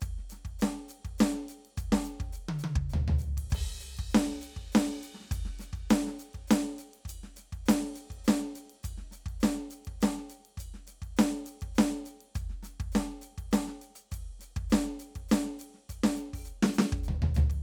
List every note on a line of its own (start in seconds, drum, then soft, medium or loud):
0.01 kick medium
0.01 hi-hat pedal medium
0.01 ride soft
0.18 snare soft
0.30 snare soft
0.30 hi-hat pedal medium
0.30 ride soft
0.45 kick medium
0.45 ride soft
0.59 snare loud
0.59 hi-hat pedal medium
0.59 ride medium
0.89 hi-hat pedal medium
0.89 ride soft
1.05 kick medium
1.05 ride soft
1.18 snare loud
1.18 hi-hat pedal medium
1.18 ride medium
1.35 snare soft
1.49 hi-hat pedal medium
1.49 ride soft
1.65 ride soft
1.77 kick medium
1.77 hi-hat pedal medium
1.77 ride soft
1.93 snare loud
2.04 hi-hat pedal medium
2.04 ride soft
2.20 kick medium
2.20 ride soft
2.33 hi-hat pedal medium
2.33 ride soft
2.49 high tom loud
2.59 hi-hat pedal medium
2.64 high tom loud
2.76 kick loud
2.90 hi-hat pedal soft
2.94 floor tom loud
3.08 floor tom loud
3.19 hi-hat pedal medium
3.19 ride soft
3.37 kick soft
3.37 ride medium
3.50 kick loud
3.50 hi-hat pedal medium
3.54 crash medium
3.80 hi-hat pedal medium
3.80 ride soft
3.97 kick medium
3.97 ride soft
4.10 hi-hat pedal soft
4.15 snare loud
4.15 crash medium
4.31 snare soft
4.41 hi-hat pedal medium
4.41 ride soft
4.57 kick medium
4.57 ride soft
4.72 snare loud
4.72 hi-hat pedal medium
4.72 crash medium
4.93 snare soft
5.03 hi-hat pedal medium
5.03 ride soft
5.15 snare soft
5.20 snare soft
5.24 snare soft
5.29 kick medium
5.29 snare soft
5.29 hi-hat pedal medium
5.33 ride medium
5.45 snare soft
5.59 snare soft
5.59 hi-hat pedal medium
5.59 ride soft
5.73 kick medium
5.73 ride soft
5.90 snare loud
5.90 hi-hat pedal medium
5.90 ride medium
6.07 snare soft
6.19 hi-hat pedal medium
6.19 ride soft
6.34 kick soft
6.34 ride soft
6.48 snare loud
6.48 hi-hat pedal medium
6.48 ride bell medium
6.70 snare soft
6.79 hi-hat pedal medium
6.79 ride soft
6.94 ride soft
7.05 kick medium
7.05 hi-hat pedal medium
7.10 ride bell medium
7.24 snare soft
7.37 snare soft
7.37 hi-hat pedal medium
7.37 ride soft
7.53 kick medium
7.53 ride soft
7.66 snare loud
7.66 hi-hat pedal medium
7.70 ride loud
7.82 snare soft
7.95 hi-hat pedal medium
7.95 ride soft
8.10 kick soft
8.10 ride soft
8.25 snare loud
8.25 hi-hat pedal medium
8.25 ride bell medium
8.44 snare soft
8.55 hi-hat pedal medium
8.55 ride soft
8.70 ride soft
8.83 kick medium
8.83 hi-hat pedal medium
8.83 ride bell medium
8.98 snare soft
9.12 snare soft
9.12 hi-hat pedal medium
9.12 ride soft
9.26 kick medium
9.26 ride soft
9.40 snare loud
9.40 hi-hat pedal medium
9.40 ride bell medium
9.55 snare soft
9.71 hi-hat pedal medium
9.71 ride soft
9.85 kick medium
9.85 ride soft
10.01 snare loud
10.01 hi-hat pedal medium
10.01 ride bell medium
10.18 snare soft
10.30 hi-hat pedal medium
10.30 ride soft
10.45 ride soft
10.58 kick medium
10.58 hi-hat pedal medium
10.58 ride bell medium
10.74 snare soft
10.87 snare soft
10.87 hi-hat pedal medium
10.87 ride soft
11.02 kick medium
11.02 ride soft
11.17 snare loud
11.17 hi-hat pedal medium
11.17 ride bell medium
11.46 hi-hat pedal medium
11.46 ride medium
11.62 kick medium
11.62 ride soft
11.75 snare loud
11.75 hi-hat pedal medium
11.75 ride bell medium
11.93 snare soft
12.06 hi-hat pedal medium
12.06 ride soft
12.21 snare soft
12.21 ride soft
12.35 kick medium
12.35 hi-hat pedal medium
12.35 ride bell soft
12.50 snare soft
12.63 snare soft
12.63 hi-hat pedal medium
12.63 ride soft
12.80 kick medium
12.80 ride soft
12.92 snare loud
12.92 hi-hat pedal medium
12.96 ride bell soft
13.09 snare soft
13.22 hi-hat pedal medium
13.22 ride soft
13.38 kick medium
13.38 ride soft
13.51 snare loud
13.51 hi-hat pedal medium
13.51 ride bell medium
13.68 snare soft
13.81 hi-hat pedal medium
13.81 ride soft
13.96 closed hi-hat medium
14.12 kick medium
14.12 hi-hat pedal medium
14.12 ride medium
14.39 snare soft
14.39 hi-hat pedal medium
14.39 ride soft
14.56 kick medium
14.56 ride soft
14.70 snare loud
14.70 hi-hat pedal medium
14.70 ride bell soft
14.86 snare soft
15.00 hi-hat pedal medium
15.00 ride soft
15.16 kick medium
15.16 ride soft
15.29 snare loud
15.29 hi-hat pedal medium
15.29 ride bell medium
15.45 snare soft
15.59 hi-hat pedal medium
15.59 ride medium
15.74 snare soft
15.89 kick soft
15.89 hi-hat pedal medium
15.89 ride soft
16.04 snare loud
16.16 hi-hat pedal medium
16.16 ride soft
16.34 open hi-hat medium
16.34 kick medium
16.45 hi-hat pedal medium
16.45 ride soft
16.63 snare loud
16.74 hi-hat pedal medium
16.79 snare loud
16.93 kick loud
17.04 hi-hat pedal medium
17.09 floor tom loud
17.22 floor tom loud
17.35 floor tom loud
17.35 hi-hat pedal medium
17.50 kick soft
17.50 ride soft